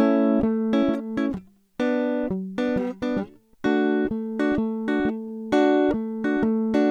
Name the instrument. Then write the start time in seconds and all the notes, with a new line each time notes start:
acoustic guitar
0.00 A3 C#4 E4
0.45 A3
0.75 C#4 E4
0.91 A3
1.19 C#4 E4
1.81 B3 D4
2.33 F#3
2.60 B3 D4
2.79 G3
3.04 B3 D4
3.66 A3 D4 F#4
4.13 A3
4.41 D4 F#4
4.60 A3
4.90 D4 F#4
5.07 A3
5.54 D4 F#4
5.96 A3
6.26 D4 F#4
6.45 A3
6.76 D4